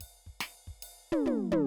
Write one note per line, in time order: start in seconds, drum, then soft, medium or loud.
0.00 kick soft
0.00 ride medium
0.26 kick soft
0.40 snare loud
0.40 ride medium
0.67 kick soft
0.82 ride medium
1.11 floor tom loud
1.11 high tom loud
1.25 floor tom medium
1.25 high tom loud
1.51 floor tom loud
1.51 high tom loud